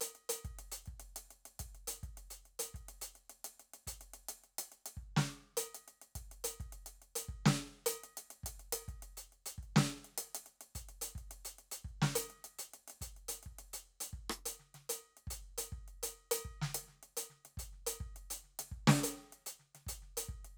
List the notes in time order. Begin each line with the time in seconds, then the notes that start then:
0.01 closed hi-hat
0.15 closed hi-hat
0.29 closed hi-hat
0.45 kick, closed hi-hat
0.59 closed hi-hat
0.72 closed hi-hat
0.86 kick, closed hi-hat
1.00 closed hi-hat
1.16 closed hi-hat
1.31 closed hi-hat
1.46 closed hi-hat
1.60 kick, closed hi-hat
1.75 closed hi-hat
1.88 closed hi-hat
2.03 kick, closed hi-hat
2.17 closed hi-hat
2.31 closed hi-hat
2.46 closed hi-hat
2.59 closed hi-hat
2.74 kick, closed hi-hat
2.89 closed hi-hat
3.02 closed hi-hat
3.15 closed hi-hat
3.30 closed hi-hat
3.45 closed hi-hat
3.60 closed hi-hat
3.74 closed hi-hat
3.87 closed hi-hat, kick
4.01 closed hi-hat
4.14 closed hi-hat
4.29 closed hi-hat
4.44 closed hi-hat
4.59 closed hi-hat
4.72 closed hi-hat
4.86 closed hi-hat
4.97 kick
5.02 closed hi-hat
5.17 snare
5.30 closed hi-hat
5.57 closed hi-hat
5.75 closed hi-hat
5.88 closed hi-hat
6.02 closed hi-hat
6.15 kick, closed hi-hat
6.32 closed hi-hat
6.44 closed hi-hat
6.60 kick, closed hi-hat
6.73 closed hi-hat
6.86 closed hi-hat
7.02 closed hi-hat
7.16 closed hi-hat
7.29 kick
7.46 snare
7.60 closed hi-hat
7.86 closed hi-hat
8.04 closed hi-hat
8.17 closed hi-hat
8.31 closed hi-hat
8.44 kick, closed hi-hat
8.60 closed hi-hat
8.73 closed hi-hat
8.88 kick, closed hi-hat
9.02 closed hi-hat
9.17 closed hi-hat
9.32 closed hi-hat
9.46 closed hi-hat
9.58 kick
9.63 closed hi-hat
9.76 snare
9.90 closed hi-hat
10.05 closed hi-hat
10.18 closed hi-hat
10.35 closed hi-hat
10.46 closed hi-hat
10.61 closed hi-hat
10.75 closed hi-hat, kick
10.89 closed hi-hat
11.02 closed hi-hat
11.15 kick, closed hi-hat
11.31 closed hi-hat
11.45 closed hi-hat
11.59 closed hi-hat
11.72 closed hi-hat
11.85 kick
11.89 closed hi-hat
12.02 snare
12.16 closed hi-hat
12.30 closed hi-hat
12.44 closed hi-hat
12.59 closed hi-hat
12.74 closed hi-hat
12.88 closed hi-hat
12.90 closed hi-hat
13.01 closed hi-hat, kick
13.17 closed hi-hat
13.29 closed hi-hat
13.43 kick, closed hi-hat
13.59 closed hi-hat
13.73 closed hi-hat
14.01 closed hi-hat
14.13 kick
14.30 cross-stick
14.46 closed hi-hat
14.59 snare
14.74 snare, closed hi-hat
14.90 closed hi-hat
15.17 closed hi-hat
15.27 closed hi-hat, kick
15.58 closed hi-hat
15.72 kick
15.88 closed hi-hat
16.03 closed hi-hat
16.31 closed hi-hat
16.45 kick
16.62 snare
16.67 snare
16.75 closed hi-hat
16.88 snare
17.03 snare, closed hi-hat
17.17 closed hi-hat
17.30 snare
17.45 snare, closed hi-hat
17.57 closed hi-hat, kick
17.72 snare
17.87 closed hi-hat
18.00 kick
18.16 closed hi-hat
18.30 closed hi-hat
18.44 snare
18.59 snare, closed hi-hat
18.72 kick
18.87 snare
18.94 snare
19.04 closed hi-hat
19.18 snare
19.33 closed hi-hat
19.46 closed hi-hat
19.59 snare
19.75 snare, closed hi-hat
19.87 closed hi-hat, kick
20.02 snare
20.17 closed hi-hat
20.29 kick
20.45 closed hi-hat